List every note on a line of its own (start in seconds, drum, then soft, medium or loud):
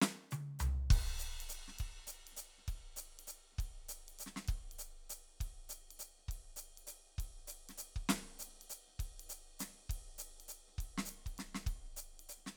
0.02 snare loud
0.31 hi-hat pedal medium
0.31 high tom medium
0.59 floor tom loud
0.59 hi-hat pedal medium
0.90 kick loud
0.90 ride medium
0.90 crash medium
1.19 hi-hat pedal medium
1.19 ride medium
1.40 ride medium
1.49 hi-hat pedal medium
1.49 ride medium
1.68 snare soft
1.79 kick soft
1.79 ride medium
2.07 hi-hat pedal medium
2.07 ride soft
2.27 ride soft
2.32 snare soft
2.36 hi-hat pedal medium
2.36 ride soft
2.58 snare soft
2.68 kick soft
2.68 ride soft
2.96 hi-hat pedal medium
2.96 ride medium
3.19 ride soft
3.27 hi-hat pedal medium
3.27 ride soft
3.52 snare soft
3.58 kick soft
3.58 ride soft
3.88 hi-hat pedal medium
3.88 ride medium
4.08 ride soft
4.19 hi-hat pedal medium
4.19 ride soft
4.26 snare soft
4.36 snare medium
4.48 kick medium
4.48 ride soft
4.71 ride soft
4.79 hi-hat pedal medium
4.79 ride soft
5.09 hi-hat pedal medium
5.09 ride medium
5.40 kick soft
5.40 ride medium
5.69 hi-hat pedal medium
5.69 ride soft
5.91 ride soft
5.99 hi-hat pedal medium
5.99 ride soft
6.18 snare soft
6.28 kick soft
6.28 ride medium
6.56 hi-hat pedal medium
6.56 ride soft
6.77 ride soft
6.87 hi-hat pedal medium
6.87 ride medium
7.18 kick soft
7.18 ride medium
7.38 snare soft
7.47 hi-hat pedal medium
7.47 ride medium
7.69 snare soft
7.69 ride soft
7.78 hi-hat pedal medium
7.78 ride medium
7.96 kick soft
8.09 snare loud
8.09 ride medium
8.39 hi-hat pedal medium
8.39 ride medium
8.61 ride soft
8.70 hi-hat pedal medium
8.70 ride soft
8.87 snare soft
8.99 kick soft
8.99 ride medium
9.20 ride soft
9.29 hi-hat pedal medium
9.29 ride medium
9.59 snare soft
9.59 hi-hat pedal medium
9.59 ride medium
9.89 kick soft
9.89 ride medium
10.18 hi-hat pedal medium
10.18 ride medium
10.40 ride soft
10.48 hi-hat pedal medium
10.48 ride soft
10.68 snare soft
10.78 kick soft
10.78 ride medium
10.98 snare medium
11.05 hi-hat pedal medium
11.05 ride soft
11.26 kick soft
11.26 ride soft
11.38 snare soft
11.38 ride soft
11.54 snare medium
11.66 kick medium
11.66 ride soft
11.85 snare soft
11.96 hi-hat pedal medium
11.96 ride soft
12.12 snare soft
12.19 ride soft
12.29 hi-hat pedal medium
12.29 ride soft
12.37 snare soft
12.46 snare soft